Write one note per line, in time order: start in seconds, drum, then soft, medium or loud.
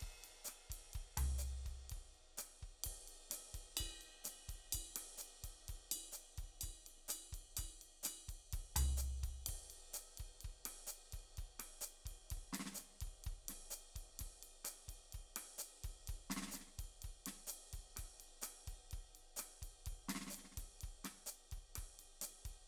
0.01 kick soft
0.01 snare soft
0.01 ride soft
0.07 kick soft
0.24 ride soft
0.45 cross-stick soft
0.45 hi-hat pedal medium
0.45 ride soft
0.70 kick soft
0.70 ride medium
0.94 kick soft
0.94 ride soft
1.00 kick soft
1.17 floor tom medium
1.17 ride medium
1.39 hi-hat pedal medium
1.39 ride soft
1.66 kick soft
1.66 ride soft
1.71 kick soft
1.90 kick soft
1.90 ride soft
1.97 kick soft
2.15 ride soft
2.38 cross-stick soft
2.38 snare soft
2.38 hi-hat pedal medium
2.38 ride medium
2.63 kick soft
2.84 kick soft
2.84 ride medium
2.91 kick soft
3.08 ride soft
3.31 snare soft
3.31 hi-hat pedal medium
3.31 ride medium
3.54 kick soft
3.54 ride soft
3.77 kick soft
3.77 ride bell loud
3.86 kick soft
4.01 ride soft
4.25 snare soft
4.25 hi-hat pedal medium
4.25 ride medium
4.49 kick soft
4.49 ride soft
4.54 kick soft
4.73 kick soft
4.73 ride bell medium
4.79 kick soft
4.96 cross-stick soft
4.96 ride medium
5.18 hi-hat pedal medium
5.18 ride soft
5.44 kick soft
5.44 ride medium
5.69 kick soft
5.69 ride soft
5.74 kick soft
5.91 snare soft
5.91 ride bell medium
6.13 hi-hat pedal medium
6.13 ride soft
6.38 kick soft
6.38 ride soft
6.44 kick soft
6.61 kick soft
6.61 snare soft
6.61 ride bell medium
6.69 kick soft
6.87 ride soft
6.97 snare soft
7.08 cross-stick soft
7.08 hi-hat pedal medium
7.08 ride bell medium
7.33 kick soft
7.33 ride soft
7.57 kick soft
7.57 cross-stick soft
7.57 ride bell medium
7.64 kick soft
7.82 ride soft
8.03 cross-stick soft
8.03 snare soft
8.03 hi-hat pedal medium
8.03 ride bell medium
8.29 kick soft
8.29 ride soft
8.53 kick soft
8.53 ride medium
8.59 kick soft
8.76 floor tom loud
8.76 ride bell loud
8.97 hi-hat pedal medium
8.97 ride soft
9.23 kick soft
9.23 ride soft
9.29 kick soft
9.47 kick soft
9.47 ride medium
9.54 kick soft
9.70 ride soft
9.94 hi-hat pedal medium
9.94 ride medium
10.18 kick soft
10.18 ride soft
10.41 kick soft
10.41 ride soft
10.50 kick soft
10.66 cross-stick soft
10.66 snare soft
10.66 ride medium
10.87 hi-hat pedal medium
10.87 ride soft
11.13 kick soft
11.13 ride soft
11.38 kick soft
11.38 ride soft
11.43 kick soft
11.59 cross-stick soft
11.59 snare soft
11.59 ride medium
11.81 hi-hat pedal medium
11.81 ride soft
12.06 kick soft
12.06 ride soft
12.11 kick soft
12.31 kick soft
12.31 ride medium
12.37 kick soft
12.53 snare soft
12.53 ride medium
12.60 snare soft
12.66 snare soft
12.72 snare soft
12.72 hi-hat pedal medium
12.78 snare soft
12.78 ride soft
12.84 snare soft
12.90 snare soft
12.95 snare soft
13.01 kick soft
13.01 ride soft
13.07 kick soft
13.24 kick soft
13.24 ride soft
13.32 kick soft
13.45 kick soft
13.45 ride medium
13.50 snare soft
13.71 hi-hat pedal medium
13.71 ride soft
13.96 kick soft
13.96 ride soft
14.09 snare soft
14.19 kick soft
14.19 snare soft
14.19 ride medium
14.26 kick soft
14.43 ride soft
14.65 cross-stick soft
14.65 hi-hat pedal medium
14.65 ride medium
14.88 kick soft
14.88 ride soft
15.13 kick soft
15.13 ride soft
15.19 kick soft
15.36 cross-stick soft
15.36 snare soft
15.36 ride medium
15.58 hi-hat pedal medium
15.58 ride medium
15.84 kick soft
15.84 ride soft
15.89 kick soft
16.08 kick soft
16.08 ride soft
16.14 kick soft
16.30 snare medium
16.30 ride medium
16.37 snare soft
16.42 snare soft
16.47 snare soft
16.52 snare soft
16.52 hi-hat pedal medium
16.56 ride soft
16.60 snare soft
16.67 snare soft
16.77 kick soft
16.77 snare soft
16.77 ride soft
16.84 kick soft
17.02 kick soft
17.02 ride soft
17.09 kick soft
17.26 snare soft
17.26 ride medium
17.47 hi-hat pedal medium
17.47 ride medium
17.73 kick soft
17.73 ride soft
17.79 kick soft
17.97 kick soft
17.97 cross-stick soft
17.97 snare soft
17.97 ride medium
18.04 kick soft
18.20 ride soft
18.42 cross-stick soft
18.42 snare soft
18.42 hi-hat pedal medium
18.42 ride medium
18.68 kick soft
18.68 ride soft
18.73 kick soft
18.91 kick soft
18.91 ride soft
18.98 kick soft
19.15 ride soft
19.37 cross-stick soft
19.37 snare soft
19.37 hi-hat pedal medium
19.37 ride medium
19.62 kick soft
19.62 ride soft
19.86 kick soft
19.86 ride soft
19.92 kick soft
20.09 snare medium
20.09 ride medium
20.15 snare soft
20.21 snare soft
20.27 snare soft
20.27 hi-hat pedal medium
20.32 snare soft
20.32 ride soft
20.38 snare soft
20.45 snare soft
20.52 snare soft
20.57 kick soft
20.57 snare soft
20.57 ride medium
20.63 kick soft
20.63 snare soft
20.67 snare soft
20.81 kick soft
20.81 ride soft
20.88 kick soft
21.05 cross-stick soft
21.05 snare soft
21.05 ride medium
21.26 hi-hat pedal medium
21.26 ride soft
21.52 kick soft
21.52 ride soft
21.58 kick soft
21.76 kick soft
21.76 cross-stick soft
21.76 ride medium
21.83 kick soft
21.99 ride soft
22.21 snare soft
22.21 hi-hat pedal medium
22.21 ride medium
22.45 kick soft
22.45 ride soft
22.50 kick soft